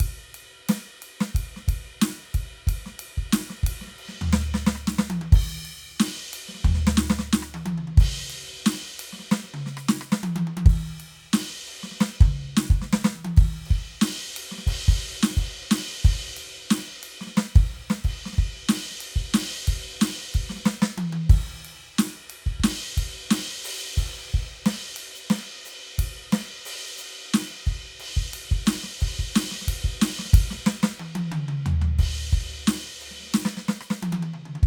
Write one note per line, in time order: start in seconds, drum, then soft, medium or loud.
0.02 kick medium
0.02 ride loud
0.35 ride medium
0.69 snare loud
0.69 hi-hat pedal medium
0.69 ride loud
1.02 hi-hat pedal soft
1.02 ride medium
1.21 snare loud
1.35 kick medium
1.35 ride loud
1.57 snare soft
1.68 kick medium
1.68 hi-hat pedal soft
1.68 ride loud
2.02 snare loud
2.02 ride loud
2.35 kick medium
2.35 ride medium
2.67 kick medium
2.67 ride loud
2.86 snare soft
3.00 ride loud
3.18 kick medium
3.33 snare loud
3.33 ride loud
3.50 snare soft
3.63 kick medium
3.63 ride loud
3.81 snare soft
3.87 snare soft
3.99 ride medium
4.09 snare soft
4.14 snare soft
4.21 floor tom loud
4.33 snare loud
4.54 snare medium
4.67 snare loud
4.76 cross-stick medium
4.88 snare loud
4.99 snare loud
5.10 high tom loud
5.22 high tom medium
5.33 kick loud
5.33 crash loud
5.65 ride medium
6.00 snare loud
6.00 ride loud
6.33 ride loud
6.49 snare soft
6.55 snare soft
6.60 snare soft
6.65 kick medium
6.65 floor tom loud
6.75 snare medium
6.87 snare loud
6.98 snare loud
7.10 snare loud
7.19 snare medium
7.33 snare loud
7.43 cross-stick medium
7.54 high tom medium
7.66 high tom loud
7.78 mid tom medium
7.88 mid tom medium
7.98 kick loud
7.98 ride loud
8.30 ride medium
8.66 snare loud
8.66 ride medium
9.00 ride loud
9.13 snare soft
9.19 snare soft
9.32 snare loud
9.44 snare soft
9.54 mid tom loud
9.66 snare medium
9.77 cross-stick medium
9.89 snare loud
10.01 cross-stick medium
10.12 snare loud
10.23 high tom loud
10.36 high tom loud
10.47 high tom medium
10.57 high tom loud
10.66 kick loud
10.66 crash medium
11.00 ride medium
11.33 snare loud
11.33 ride loud
11.67 ride medium
11.83 snare medium
11.92 snare soft
12.01 snare loud
12.21 kick loud
12.21 mid tom loud
12.57 snare loud
12.70 kick loud
12.70 mid tom medium
12.82 snare medium
12.93 snare loud
13.05 snare loud
13.15 high tom medium
13.25 high tom loud
13.37 kick loud
13.37 crash medium
13.66 ride medium
13.71 kick medium
14.02 snare loud
14.02 ride loud
14.37 ride loud
14.52 snare soft
14.58 snare soft
14.67 kick medium
14.67 ride loud
14.88 kick loud
14.88 ride medium
15.23 snare loud
15.37 kick medium
15.37 ride medium
15.71 snare loud
15.71 ride loud
16.05 kick loud
16.05 ride loud
16.37 ride medium
16.71 snare loud
16.71 ride medium
17.03 ride medium
17.21 snare medium
17.27 snare soft
17.37 snare loud
17.55 kick loud
17.55 crash medium
17.90 snare loud
18.04 kick medium
18.04 ride medium
18.26 snare medium
18.33 snare soft
18.38 kick medium
18.38 ride medium
18.69 snare loud
18.69 ride loud
18.91 snare soft
19.01 ride medium
19.16 kick medium
19.34 snare loud
19.34 ride loud
19.68 kick medium
19.68 ride medium
20.01 snare loud
20.01 ride loud
20.34 kick medium
20.34 ride medium
20.50 snare medium
20.56 snare soft
20.82 snare loud
20.98 high tom loud
21.13 high tom loud
21.30 kick loud
21.30 crash medium
21.65 ride medium
21.99 snare loud
21.99 ride loud
22.30 ride medium
22.46 kick medium
22.60 kick soft
22.64 snare loud
22.64 ride loud
22.97 kick medium
22.97 ride medium
23.31 snare loud
23.31 ride loud
23.65 open hi-hat loud
23.65 ride loud
23.98 kick medium
23.98 hi-hat pedal soft
23.98 crash medium
24.33 kick medium
24.33 ride soft
24.66 snare loud
24.66 ride loud
24.96 ride loud
25.15 hi-hat pedal medium
25.30 snare loud
25.30 ride medium
25.65 hi-hat pedal medium
25.65 ride medium
25.99 kick medium
25.99 ride loud
26.33 snare loud
26.33 ride medium
26.65 open hi-hat medium
26.65 ride loud
26.98 hi-hat pedal medium
26.98 ride medium
27.34 snare loud
27.34 ride medium
27.66 kick medium
27.66 ride medium
28.00 ride loud
28.17 kick medium
28.34 ride loud
28.52 kick medium
28.67 snare loud
28.67 ride loud
28.84 snare soft
28.89 snare soft
28.94 snare soft
29.01 kick medium
29.01 ride medium
29.19 kick medium
29.35 snare loud
29.35 ride loud
29.52 snare soft
29.68 kick medium
29.68 ride loud
29.84 kick medium
30.02 snare loud
30.02 ride loud
30.19 snare medium
30.25 snare soft
30.34 kick loud
30.34 ride loud
30.51 snare medium
30.67 snare loud
30.83 snare loud
31.00 high tom medium
31.15 high tom loud
31.32 mid tom loud
31.48 mid tom loud
31.66 floor tom loud
31.82 floor tom loud
31.99 kick medium
31.99 ride loud
32.32 kick medium
32.32 ride medium
32.68 snare loud
32.68 ride medium
33.01 ride medium
33.11 snare soft
33.16 snare soft
33.20 snare soft
33.23 snare soft
33.26 snare soft
33.34 snare loud
33.34 hi-hat pedal medium
33.45 snare loud
33.57 snare medium
33.69 snare loud
33.81 cross-stick medium
33.91 snare medium
34.03 high tom loud
34.13 high tom loud
34.23 high tom medium
34.34 mid tom soft
34.46 mid tom medium
34.55 mid tom medium
34.63 kick loud